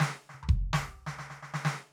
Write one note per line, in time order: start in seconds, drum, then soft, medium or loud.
0.00 snare loud
0.29 snare soft
0.34 high tom soft
0.43 floor tom medium
0.49 kick loud
0.73 snare loud
1.06 snare medium
1.19 snare medium
1.30 snare soft
1.43 snare soft
1.54 snare medium
1.65 snare loud